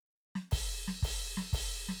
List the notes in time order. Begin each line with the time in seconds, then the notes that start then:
0.36 snare
0.51 kick, crash
0.88 snare
1.03 kick, crash
1.37 snare
1.53 kick, crash
1.89 snare